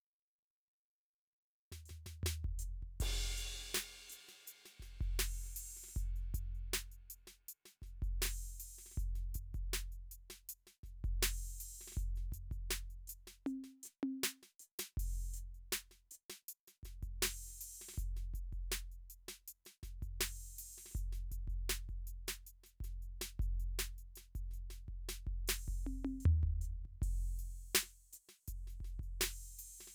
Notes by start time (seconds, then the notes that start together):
1.72 snare, floor tom
1.85 snare, hi-hat pedal
1.90 floor tom
2.06 snare, floor tom
2.23 snare, floor tom
2.44 kick
2.59 hi-hat pedal
2.82 kick
3.00 kick, crash, ride
3.38 hi-hat pedal
3.55 closed hi-hat
3.74 snare, closed hi-hat
3.77 snare
3.93 closed hi-hat
4.09 closed hi-hat, hi-hat pedal
4.28 snare, closed hi-hat
4.47 closed hi-hat, hi-hat pedal
4.65 snare, closed hi-hat
4.80 kick, snare
4.84 closed hi-hat
5.01 kick, closed hi-hat
5.19 open hi-hat, snare
5.44 snare
5.46 snare
5.56 open hi-hat
5.76 snare
5.84 snare
5.88 snare
5.96 kick, closed hi-hat, hi-hat pedal
6.16 closed hi-hat
6.21 snare
6.34 closed hi-hat, kick
6.55 closed hi-hat
6.73 snare, closed hi-hat
6.91 closed hi-hat
7.10 closed hi-hat
7.27 snare, closed hi-hat
7.48 closed hi-hat
7.65 snare, closed hi-hat
7.82 kick, snare
7.86 closed hi-hat
8.02 kick, closed hi-hat
8.22 open hi-hat, snare
8.25 snare
8.43 snare
8.60 open hi-hat
8.78 snare
8.86 snare
8.91 snare
8.96 kick, closed hi-hat, hi-hat pedal
9.15 snare, closed hi-hat
9.34 closed hi-hat, kick
9.54 kick, closed hi-hat
9.73 snare, closed hi-hat
9.92 closed hi-hat
10.11 closed hi-hat
10.30 snare, closed hi-hat
10.49 closed hi-hat
10.67 snare, closed hi-hat
10.83 kick, snare, closed hi-hat
11.04 kick, closed hi-hat
11.23 open hi-hat, snare
11.60 open hi-hat
11.81 snare
11.87 snare
11.92 snare, hi-hat pedal
11.97 kick, closed hi-hat
12.16 snare, closed hi-hat
12.32 closed hi-hat, kick
12.51 kick, closed hi-hat
12.70 snare, closed hi-hat
12.90 closed hi-hat
13.07 closed hi-hat, hi-hat pedal
13.27 snare
13.46 hi-hat pedal, high tom
13.64 snare
13.83 snare, hi-hat pedal
14.03 high tom
14.23 snare
14.43 snare
14.59 closed hi-hat, hi-hat pedal
14.79 closed hi-hat, snare
14.97 open hi-hat, kick
15.11 snare
15.34 closed hi-hat, hi-hat pedal
15.54 closed hi-hat
15.72 closed hi-hat, snare
15.91 snare
16.11 hi-hat pedal, open hi-hat
16.30 snare, closed hi-hat
16.48 closed hi-hat
16.67 snare, closed hi-hat
16.83 kick, snare, closed hi-hat
17.03 kick, closed hi-hat
17.22 open hi-hat, snare
17.25 snare
17.47 snare
17.50 snare
17.61 open hi-hat
17.81 snare
17.88 snare
17.94 snare, hi-hat pedal
17.98 kick, closed hi-hat
18.16 snare, closed hi-hat
18.34 kick, closed hi-hat
18.53 kick, closed hi-hat
18.72 snare, closed hi-hat
18.91 closed hi-hat
19.10 closed hi-hat
19.28 snare, closed hi-hat
19.48 closed hi-hat
19.65 snare, closed hi-hat
19.83 kick, snare, closed hi-hat
20.02 kick, closed hi-hat
20.20 open hi-hat, snare
20.58 open hi-hat
20.78 snare
20.86 snare
20.91 kick, snare, hi-hat pedal
20.97 closed hi-hat
21.12 snare, closed hi-hat
21.32 kick, closed hi-hat
21.48 kick, closed hi-hat
21.69 snare, closed hi-hat
21.89 kick, closed hi-hat
22.07 closed hi-hat
22.28 snare, closed hi-hat
22.46 closed hi-hat
22.63 snare, closed hi-hat
22.80 kick, snare, closed hi-hat
23.02 closed hi-hat
23.21 snare, closed hi-hat
23.39 kick, closed hi-hat
23.60 closed hi-hat
23.79 snare, closed hi-hat
23.98 closed hi-hat
24.15 snare, closed hi-hat
24.35 kick, closed hi-hat
24.51 snare, closed hi-hat
24.70 snare, closed hi-hat
24.88 kick
25.09 snare, closed hi-hat
25.27 kick
25.48 snare, open hi-hat
25.68 kick
25.86 high tom
26.05 high tom
26.20 hi-hat pedal
26.25 floor tom
26.43 kick
26.61 hi-hat pedal
26.85 kick
27.02 kick, crash
27.39 closed hi-hat
27.56 closed hi-hat
27.75 open hi-hat, snare
27.83 snare
28.13 open hi-hat, hi-hat pedal
28.29 snare, closed hi-hat
28.48 closed hi-hat, kick
28.67 snare, closed hi-hat
28.80 kick, snare
28.86 closed hi-hat
28.99 kick, closed hi-hat
29.21 open hi-hat, snare
29.23 snare
29.59 open hi-hat
29.80 snare
29.87 snare